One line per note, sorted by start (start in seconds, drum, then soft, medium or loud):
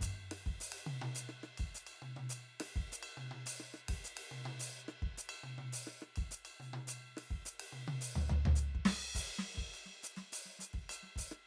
0.01 kick soft
0.01 hi-hat pedal loud
0.01 ride bell loud
0.31 cross-stick medium
0.31 ride loud
0.46 kick medium
0.60 hi-hat pedal loud
0.72 ride loud
0.87 high tom medium
1.02 high tom medium
1.15 hi-hat pedal loud
1.15 ride bell medium
1.29 cross-stick soft
1.43 cross-stick soft
1.43 ride bell soft
1.58 kick medium
1.58 ride bell medium
1.75 hi-hat pedal loud
1.87 ride bell medium
2.02 high tom medium
2.16 open hi-hat soft
2.16 high tom medium
2.16 ride bell soft
2.30 hi-hat pedal loud
2.30 ride bell medium
2.60 cross-stick medium
2.60 hi-hat pedal soft
2.60 ride loud
2.76 kick medium
2.92 hi-hat pedal loud
3.03 ride bell loud
3.17 high tom medium
3.31 high tom medium
3.46 hi-hat pedal loud
3.46 ride bell loud
3.60 cross-stick soft
3.74 cross-stick soft
3.74 ride soft
3.89 kick medium
3.89 ride loud
4.04 hi-hat pedal loud
4.17 ride loud
4.31 high tom medium
4.46 high tom medium
4.46 ride soft
4.60 hi-hat pedal loud
4.60 ride bell medium
4.88 cross-stick medium
5.02 kick medium
5.18 hi-hat pedal loud
5.29 ride bell loud
5.44 high tom medium
5.58 high tom medium
5.73 hi-hat pedal loud
5.73 ride bell medium
5.87 cross-stick soft
6.01 cross-stick soft
6.01 ride soft
6.16 kick medium
6.16 ride bell medium
6.31 hi-hat pedal loud
6.45 ride bell medium
6.60 hi-hat pedal soft
6.60 high tom medium
6.74 high tom medium
6.87 hi-hat pedal loud
6.87 ride bell medium
7.17 cross-stick medium
7.17 ride medium
7.31 kick soft
7.46 hi-hat pedal loud
7.60 ride loud
7.73 high tom medium
7.88 high tom medium
8.01 hi-hat pedal loud
8.16 floor tom loud
8.30 floor tom loud
8.45 floor tom loud
8.56 hi-hat pedal loud
8.75 kick soft
8.85 snare loud
8.85 crash loud
9.15 kick soft
9.15 hi-hat pedal loud
9.15 ride medium
9.39 snare medium
9.39 hi-hat pedal soft
9.55 kick soft
9.55 snare soft
9.74 hi-hat pedal soft
9.74 ride bell medium
9.86 snare soft
10.03 hi-hat pedal loud
10.03 ride soft
10.17 snare soft
10.17 ride soft
10.32 hi-hat pedal loud
10.32 ride bell medium
10.46 snare soft
10.59 snare soft
10.59 hi-hat pedal loud
10.59 ride soft
10.73 kick soft
10.73 ride soft
10.90 hi-hat pedal loud
10.90 ride bell loud
11.03 snare soft
11.16 kick soft
11.16 hi-hat pedal loud
11.16 ride soft
11.32 cross-stick soft
11.32 ride soft